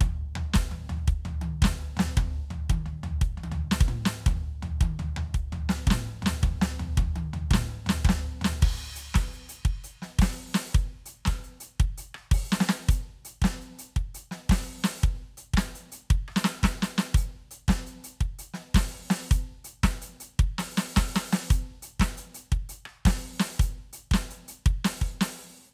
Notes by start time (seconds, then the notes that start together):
0.01 kick, floor tom, hi-hat pedal
0.36 floor tom
0.54 kick, snare
0.72 floor tom
0.90 floor tom
0.97 floor tom
1.08 kick, hi-hat pedal
1.25 floor tom
1.42 high tom
1.62 kick, snare, floor tom
1.97 snare, floor tom
2.17 kick, hi-hat pedal, floor tom
2.51 floor tom
2.70 kick, high tom
2.86 floor tom
3.04 floor tom
3.10 floor tom
3.22 kick, hi-hat pedal
3.38 floor tom
3.44 high tom
3.52 floor tom
3.72 snare
3.81 kick
3.88 mid tom
4.06 snare
4.26 kick, floor tom, hi-hat pedal
4.63 floor tom
4.81 kick, high tom
4.99 floor tom
5.17 floor tom
5.34 kick, hi-hat pedal
5.53 floor tom
5.69 snare
5.87 kick, snare, mid tom
6.23 snare, floor tom
6.42 kick, floor tom, hi-hat pedal
6.62 snare
6.80 floor tom
6.98 kick, floor tom
7.16 high tom
7.34 floor tom
7.51 kick, snare, hi-hat pedal, mid tom
7.87 snare, floor tom
8.05 kick, hi-hat pedal, floor tom
8.09 snare
8.42 snare, floor tom
8.62 kick, hi-hat pedal, crash
8.96 closed hi-hat
9.15 kick, snare
9.33 closed hi-hat
9.49 closed hi-hat
9.65 kick
9.84 closed hi-hat
10.02 snare
10.19 open hi-hat, kick, snare
10.55 open hi-hat, snare
10.73 kick, hi-hat pedal
10.78 closed hi-hat
11.06 closed hi-hat
11.25 kick, snare
11.44 closed hi-hat
11.60 closed hi-hat
11.80 kick
11.98 closed hi-hat
12.15 cross-stick
12.32 open hi-hat, kick
12.52 snare
12.61 snare
12.69 snare
12.88 closed hi-hat, kick, hi-hat pedal
13.25 closed hi-hat
13.42 kick, snare
13.61 closed hi-hat
13.79 closed hi-hat
13.96 kick
14.15 closed hi-hat
14.31 snare
14.50 open hi-hat, kick, snare
14.84 open hi-hat, snare
15.03 kick, hi-hat pedal
15.37 closed hi-hat
15.54 kick, cross-stick, snare
15.75 closed hi-hat
15.92 closed hi-hat
16.10 kick
16.28 cross-stick
16.36 snare
16.45 snare
16.63 kick, snare
16.82 snare
16.98 snare
17.15 open hi-hat, kick
17.51 closed hi-hat
17.68 kick, snare
17.87 closed hi-hat
18.04 closed hi-hat
18.21 kick
18.39 closed hi-hat
18.54 snare
18.75 open hi-hat, kick, snare
19.10 open hi-hat, snare
19.28 closed hi-hat, kick, hi-hat pedal
19.65 closed hi-hat
19.84 kick, snare
20.02 closed hi-hat
20.20 closed hi-hat
20.39 kick
20.58 open hi-hat, snare
20.77 open hi-hat, snare
20.96 open hi-hat, kick, snare
21.15 open hi-hat, snare
21.32 open hi-hat, snare
21.49 closed hi-hat, kick, hi-hat pedal
21.83 closed hi-hat
22.00 kick, snare
22.18 closed hi-hat
22.35 closed hi-hat
22.52 kick
22.69 closed hi-hat
22.86 cross-stick
23.05 open hi-hat, kick, snare
23.40 open hi-hat, snare
23.57 kick, hi-hat pedal
23.61 closed hi-hat
23.93 closed hi-hat
24.11 kick, snare
24.30 closed hi-hat
24.48 closed hi-hat
24.66 kick
24.85 open hi-hat, snare
25.02 kick
25.21 open hi-hat, snare
25.67 hi-hat pedal